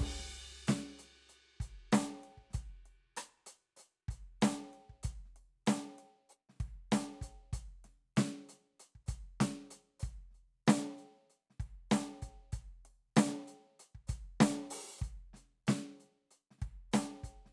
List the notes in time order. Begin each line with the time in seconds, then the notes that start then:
0.01 kick, crash
0.07 kick
0.19 snare
0.25 snare
0.28 snare
0.32 snare
0.37 closed hi-hat
0.68 closed hi-hat, snare
0.99 closed hi-hat
1.29 closed hi-hat
1.60 closed hi-hat, kick
1.92 closed hi-hat, snare
2.24 closed hi-hat
2.38 kick
2.50 closed hi-hat, snare
2.54 kick, snare
2.86 closed hi-hat
3.17 closed hi-hat, cross-stick
3.47 closed hi-hat
3.77 closed hi-hat, hi-hat pedal
4.09 closed hi-hat, kick
4.42 closed hi-hat, snare
4.73 closed hi-hat
4.90 kick
5.03 closed hi-hat, kick
5.25 snare
5.36 closed hi-hat
5.67 closed hi-hat, snare
5.99 closed hi-hat
6.30 open hi-hat
6.49 snare
6.53 snare
6.55 snare
6.60 kick, closed hi-hat
6.68 kick
6.92 closed hi-hat, snare
7.22 closed hi-hat, kick
7.53 closed hi-hat, kick
7.84 snare, closed hi-hat
8.17 closed hi-hat, snare
8.49 closed hi-hat
8.80 closed hi-hat
8.95 kick
9.07 closed hi-hat, kick, hi-hat pedal
9.40 closed hi-hat, snare
9.71 open hi-hat
10.00 kick, hi-hat pedal
10.04 closed hi-hat
10.31 closed hi-hat, snare
10.67 open hi-hat, snare
10.98 closed hi-hat
11.30 closed hi-hat
11.50 snare
11.60 kick, closed hi-hat
11.90 closed hi-hat, snare, hi-hat pedal
12.22 closed hi-hat, kick
12.53 closed hi-hat, kick
12.85 closed hi-hat
13.16 closed hi-hat, snare
13.29 snare
13.48 closed hi-hat
13.80 closed hi-hat
13.95 kick
14.08 closed hi-hat, kick, hi-hat pedal
14.41 closed hi-hat, snare
14.71 open hi-hat
14.99 kick, hi-hat pedal
15.04 closed hi-hat
15.34 closed hi-hat, snare
15.67 open hi-hat, snare, hi-hat pedal
16.00 closed hi-hat
16.31 closed hi-hat
16.51 snare
16.58 kick, snare, closed hi-hat
16.92 closed hi-hat, snare, hi-hat pedal
17.24 closed hi-hat, kick
17.46 snare